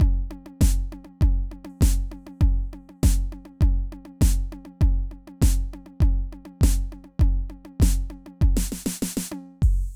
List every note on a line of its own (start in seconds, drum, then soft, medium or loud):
0.00 kick loud
0.00 high tom loud
0.31 high tom medium
0.46 high tom medium
0.61 kick loud
0.61 snare loud
0.61 high tom loud
0.92 high tom medium
1.04 high tom medium
1.21 kick loud
1.21 high tom loud
1.51 high tom medium
1.65 high tom medium
1.70 crash soft
1.81 kick loud
1.81 snare loud
1.81 high tom loud
2.11 high tom medium
2.27 high tom medium
2.41 kick loud
2.41 high tom loud
2.73 high tom medium
2.89 high tom medium
3.03 kick loud
3.03 snare loud
3.03 high tom loud
3.32 high tom medium
3.45 high tom medium
3.61 kick loud
3.61 high tom loud
3.92 high tom medium
4.05 high tom medium
4.21 kick loud
4.21 snare loud
4.21 high tom loud
4.52 high tom medium
4.65 high tom medium
4.81 kick loud
4.81 high tom loud
5.11 high tom medium
5.27 high tom medium
5.42 kick loud
5.42 snare loud
5.42 high tom loud
5.73 high tom medium
5.86 high tom medium
6.00 kick loud
6.00 high tom loud
6.32 high tom medium
6.45 high tom medium
6.61 kick loud
6.61 snare loud
6.61 high tom loud
6.92 high tom medium
7.04 high tom medium
7.19 kick loud
7.19 high tom loud
7.50 high tom medium
7.65 high tom medium
7.80 kick loud
7.80 snare loud
7.80 high tom loud
8.10 high tom medium
8.26 high tom medium
8.41 kick loud
8.41 high tom loud
8.57 snare loud
8.72 snare medium
8.86 snare loud
9.02 snare loud
9.17 snare loud
9.31 high tom loud
9.62 kick loud
9.62 crash medium